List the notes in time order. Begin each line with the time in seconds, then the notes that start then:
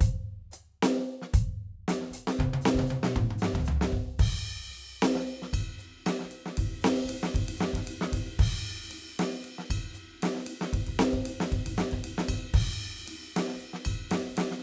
0.01 closed hi-hat, kick
0.52 closed hi-hat, hi-hat pedal
0.83 closed hi-hat, snare
0.98 snare
1.09 closed hi-hat
1.22 snare
1.34 closed hi-hat, kick
1.88 closed hi-hat, snare
2.02 snare
2.05 snare
2.10 closed hi-hat, kick, snare
2.27 snare
2.39 kick, high tom
2.54 high tom
2.61 hi-hat pedal
2.66 snare
2.75 kick, snare
2.79 high tom
2.87 hi-hat pedal, high tom
3.03 snare
3.16 kick, mid tom
3.31 mid tom
3.38 hi-hat pedal
3.42 snare
3.54 kick, floor tom
3.58 snare
3.65 floor tom, hi-hat pedal
3.81 snare
3.89 kick, hi-hat pedal
4.19 kick, hi-hat pedal, crash
4.70 hi-hat pedal
5.02 snare, ride
5.15 snare
5.19 snare
5.26 hi-hat pedal, ride
5.42 snare
5.53 kick, ride bell
5.79 hi-hat pedal, ride
6.06 snare, ride bell
6.20 snare
6.23 kick, snare
6.30 hi-hat pedal, ride
6.46 snare
6.57 kick, ride
6.82 snare, hi-hat pedal, ride
6.94 snare
6.97 snare
6.99 snare
7.05 kick, snare, hi-hat pedal
7.09 ride
7.23 snare
7.35 kick, ride
7.49 ride
7.57 snare, hi-hat pedal
7.73 kick, snare, ride
7.84 hi-hat pedal, ride
7.91 kick
8.01 snare
8.13 kick, ride
8.39 kick, crash
8.90 hi-hat pedal, ride
9.19 snare, ride
9.42 hi-hat pedal, ride
9.59 snare
9.70 kick, ride bell
9.94 hi-hat pedal, ride
10.23 snare, ride
10.35 snare
10.38 snare
10.45 hi-hat pedal, ride
10.61 snare
10.73 kick, ride
10.87 kick, ride
10.99 snare, hi-hat pedal
11.13 kick, ride
11.25 hi-hat pedal, ride
11.32 kick
11.40 snare
11.49 kick, hi-hat pedal, ride
11.66 kick, ride
11.77 snare, hi-hat pedal
11.92 kick, cross-stick, ride
12.04 kick, hi-hat pedal, ride
12.18 snare
12.26 kick, hi-hat pedal, ride bell
12.54 kick, hi-hat pedal, crash
13.06 hi-hat pedal, ride
13.37 snare, ride
13.48 snare
13.52 kick, snare
13.59 hi-hat pedal, ride
13.74 snare
13.85 kick, ride bell
14.10 snare, hi-hat pedal, ride
14.30 kick
14.35 snare, hi-hat pedal, ride
14.51 snare
14.58 snare